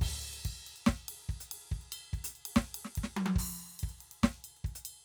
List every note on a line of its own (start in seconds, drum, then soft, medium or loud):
0.01 kick medium
0.01 crash loud
0.22 ride medium
0.33 closed hi-hat medium
0.45 kick medium
0.45 ride medium
0.56 closed hi-hat soft
0.66 ride medium
0.76 ride bell soft
0.86 kick medium
0.86 snare loud
1.08 ride loud
1.22 closed hi-hat soft
1.29 kick medium
1.29 ride soft
1.40 closed hi-hat medium
1.51 ride loud
1.61 closed hi-hat soft
1.71 kick medium
1.71 ride soft
1.81 closed hi-hat soft
1.92 ride bell loud
2.04 closed hi-hat soft
2.13 kick medium
2.13 ride soft
2.24 closed hi-hat loud
2.35 ride bell soft
2.45 ride loud
2.56 kick medium
2.56 snare loud
2.74 ride loud
2.85 snare soft
2.95 kick medium
2.95 ride medium
3.03 snare medium
3.16 high tom loud
3.26 high tom loud
3.35 kick medium
3.35 crash loud
3.49 closed hi-hat soft
3.60 ride soft
3.69 closed hi-hat soft
3.79 kick medium
3.79 ride bell medium
3.89 closed hi-hat medium
4.01 ride medium
4.11 ride medium
4.23 kick medium
4.23 snare loud
4.44 ride bell medium
4.56 closed hi-hat soft
4.64 kick medium
4.64 ride bell soft
4.75 closed hi-hat medium
4.85 ride bell medium